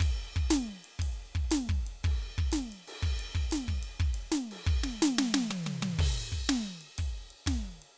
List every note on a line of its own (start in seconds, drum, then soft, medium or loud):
0.01 kick medium
0.01 ride loud
0.37 kick medium
0.51 snare loud
0.51 ride loud
0.85 ride medium
1.00 kick medium
1.00 ride loud
1.36 kick medium
1.52 snare loud
1.52 ride loud
1.70 kick medium
1.88 ride medium
2.04 kick medium
2.04 ride medium
2.39 kick medium
2.53 snare medium
2.53 ride loud
2.73 ride medium
2.89 ride medium
3.03 kick medium
3.20 ride medium
3.36 kick medium
3.52 snare medium
3.52 ride loud
3.69 kick medium
3.84 ride medium
4.01 kick medium
4.15 ride medium
4.33 snare loud
4.52 ride medium
4.67 kick medium
4.84 snare medium
5.03 snare loud
5.19 snare loud
5.35 snare loud
5.52 high tom loud
5.67 high tom loud
5.83 high tom loud
6.00 kick medium
6.00 crash medium
6.33 kick soft
6.50 snare loud
6.50 ride medium
6.82 ride medium
6.99 kick medium
6.99 ride loud
7.31 ride medium
7.47 kick medium
7.47 snare medium
7.47 ride loud
7.83 ride medium